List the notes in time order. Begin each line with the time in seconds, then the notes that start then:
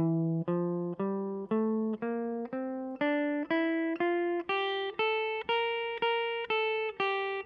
0.00 E3
0.49 F3
1.01 G3
1.52 A3
2.03 A#3
2.54 C4
3.02 D4
3.51 E4
4.01 F4
4.50 G4
5.00 A4
5.50 A#4
6.03 A#4
6.51 A4
7.01 G4